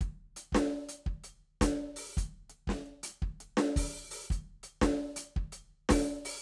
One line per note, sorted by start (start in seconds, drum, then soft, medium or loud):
0.02 kick medium
0.02 closed hi-hat medium
0.36 closed hi-hat medium
0.52 kick medium
0.52 snare loud
0.70 closed hi-hat soft
0.89 closed hi-hat loud
1.06 kick medium
1.24 closed hi-hat medium
1.61 closed hi-hat loud
1.61 kick medium
1.61 snare loud
1.96 open hi-hat loud
2.14 closed hi-hat medium
2.14 kick medium
2.14 hi-hat pedal soft
2.50 closed hi-hat medium
2.67 kick medium
2.67 snare loud
2.86 closed hi-hat soft
3.03 closed hi-hat loud
3.22 kick medium
3.40 closed hi-hat medium
3.57 snare loud
3.76 open hi-hat loud
3.76 kick medium
4.11 open hi-hat loud
4.25 hi-hat pedal soft
4.30 closed hi-hat medium
4.30 kick medium
4.63 closed hi-hat medium
4.81 kick medium
4.81 snare loud
4.97 closed hi-hat soft
5.16 closed hi-hat loud
5.36 kick medium
5.52 closed hi-hat medium
5.89 open hi-hat loud
5.89 kick medium
5.89 snare loud
6.25 open hi-hat loud